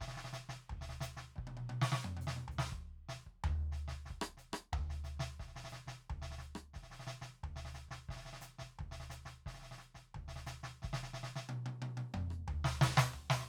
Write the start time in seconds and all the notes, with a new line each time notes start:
0.01 kick, snare
0.08 snare
0.13 snare
0.17 snare
0.24 snare
0.33 snare, hi-hat pedal
0.49 kick, snare
0.70 kick, floor tom
0.81 snare
0.89 snare
1.01 snare, hi-hat pedal
1.17 snare
1.36 kick, high tom
1.47 high tom
1.57 high tom
1.69 high tom
1.82 snare
1.92 snare
2.01 hi-hat pedal, mid tom
2.17 high tom
2.21 hi-hat pedal
2.27 snare
2.36 high tom
2.48 floor tom, hi-hat pedal
2.58 snare
2.67 cross-stick
2.72 kick
3.09 snare, hi-hat pedal
3.26 kick
3.44 kick, floor tom
3.72 snare
3.77 hi-hat pedal
3.88 snare
3.92 kick
4.05 snare
4.10 kick
4.21 cross-stick
4.37 snare, hi-hat pedal
4.52 kick, cross-stick
4.73 kick, floor tom
4.89 snare
5.04 snare, hi-hat pedal
5.17 kick, snare
5.39 kick, snare
5.47 snare
5.54 snare
5.56 snare
5.64 snare
5.69 snare, hi-hat pedal
5.87 kick, snare
6.10 kick, floor tom
6.22 snare
6.31 snare
6.38 snare
6.42 hi-hat pedal
6.55 kick, cross-stick
6.73 kick, snare
6.83 snare
6.90 snare
6.99 snare
7.07 snare, hi-hat pedal
7.21 kick, snare
7.43 kick, floor tom
7.56 snare
7.65 snare
7.74 snare, hi-hat pedal
7.88 kick, snare
8.09 kick, snare
8.16 snare
8.21 snare
8.25 snare
8.33 snare
8.41 snare, hi-hat pedal
8.59 kick, snare
8.79 kick, floor tom
8.91 snare
9.00 snare
9.10 snare, hi-hat pedal
9.25 kick, snare
9.46 kick, snare
9.54 snare
9.59 snare
9.62 snare
9.71 snare
9.78 snare, hi-hat pedal
9.95 kick, snare
10.14 kick, floor tom
10.28 snare
10.36 snare
10.46 snare, hi-hat pedal
10.63 snare
10.82 kick, snare
10.92 kick, snare
11.13 snare
11.23 snare
11.36 snare
11.49 high tom
11.66 high tom
11.82 high tom
11.97 open hi-hat, high tom
12.14 kick, mid tom
12.30 cross-stick
12.47 kick, floor tom
12.64 snare
12.79 kick, snare
12.97 snare
13.13 floor tom
13.30 snare
13.39 snare